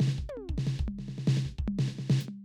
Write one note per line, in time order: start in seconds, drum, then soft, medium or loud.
0.00 snare loud
0.07 snare medium
0.18 kick soft
0.29 high tom medium
0.37 high tom medium
0.49 kick soft
0.58 snare medium
0.67 snare medium
0.79 kick medium
0.88 mid tom medium
0.99 snare soft
1.08 snare soft
1.18 snare medium
1.27 snare loud
1.37 snare medium
1.45 kick soft
1.58 kick soft
1.68 mid tom loud
1.79 snare loud
1.88 snare medium
1.98 snare medium
2.10 snare loud
2.21 closed hi-hat medium
2.28 mid tom medium